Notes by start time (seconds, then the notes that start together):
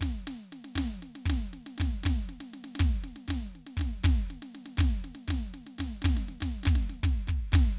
0.01 kick, snare, hi-hat pedal
0.24 snare, hi-hat pedal
0.52 snare, hi-hat pedal
0.65 snare
0.75 kick, snare, hi-hat pedal
0.78 snare
1.03 snare, hi-hat pedal
1.16 snare
1.26 kick, snare
1.30 snare
1.54 snare, hi-hat pedal
1.67 snare
1.78 kick, snare
1.82 snare
2.04 kick, snare, hi-hat pedal
2.07 snare
2.29 snare
2.41 snare
2.54 snare, hi-hat pedal
2.64 snare
2.76 snare
2.80 kick, snare
3.03 snare, hi-hat pedal
3.16 snare
3.26 kick, snare, hi-hat pedal
3.31 snare
3.52 snare, hi-hat pedal
3.67 snare
3.75 kick, hi-hat pedal
3.80 snare
3.81 snare
4.03 kick, snare, hi-hat pedal
4.06 snare
4.31 snare
4.43 snare
4.54 snare, hi-hat pedal
4.66 snare
4.78 kick, snare, hi-hat pedal
4.81 snare
5.04 snare, hi-hat pedal
5.15 snare
5.28 kick, snare
5.31 snare
5.54 snare, hi-hat pedal
5.67 snare
5.78 kick, snare, hi-hat pedal
5.81 snare
6.02 kick, snare, hi-hat pedal
6.06 snare
6.17 snare
6.26 snare, hi-hat pedal
6.41 kick, snare
6.42 snare
6.51 hi-hat pedal
6.64 snare
6.66 kick, snare
6.74 snare, hi-hat pedal
6.90 snare
7.02 kick, snare, hi-hat pedal
7.23 hi-hat pedal
7.28 kick, snare
7.51 kick, snare, hi-hat pedal
7.55 snare